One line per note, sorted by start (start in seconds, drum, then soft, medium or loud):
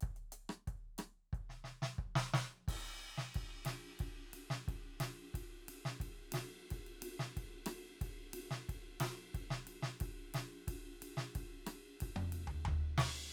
0.01 kick medium
0.01 closed hi-hat medium
0.16 closed hi-hat soft
0.32 closed hi-hat medium
0.49 cross-stick medium
0.68 kick medium
0.68 closed hi-hat soft
0.98 cross-stick medium
0.98 closed hi-hat medium
1.33 kick medium
1.33 closed hi-hat soft
1.50 snare soft
1.64 snare soft
1.82 snare medium
1.98 kick medium
2.16 snare loud
2.34 snare loud
2.68 kick medium
2.68 crash medium
3.09 kick soft
3.18 snare medium
3.35 kick medium
3.35 ride medium
3.65 snare medium
3.65 ride medium
3.99 kick medium
3.99 ride medium
4.33 ride medium
4.50 snare medium
4.68 kick medium
4.68 ride soft
5.00 snare medium
5.00 ride medium
5.34 kick medium
5.34 ride medium
5.69 ride medium
5.85 snare medium
6.00 kick medium
6.00 ride medium
6.32 snare medium
6.32 ride loud
6.71 kick soft
6.71 ride medium
6.87 ride soft
7.02 ride loud
7.20 snare medium
7.37 kick soft
7.37 ride medium
7.66 cross-stick medium
7.66 ride medium
8.01 kick medium
8.01 ride medium
8.34 ride loud
8.51 snare medium
8.69 kick soft
8.69 ride medium
9.00 snare medium
9.00 ride loud
9.35 kick medium
9.35 ride medium
9.51 snare medium
9.67 ride medium
9.83 snare medium
10.01 kick medium
10.01 ride medium
10.34 snare medium
10.34 ride medium
10.68 kick medium
10.68 ride medium
11.02 ride medium
11.17 snare medium
11.35 kick medium
11.35 ride medium
11.67 cross-stick medium
11.67 ride medium
12.01 kick medium
12.01 ride medium
12.16 mid tom loud
12.32 ride medium
12.47 floor tom medium
12.65 kick medium
12.65 floor tom loud
12.98 snare loud
12.98 ride loud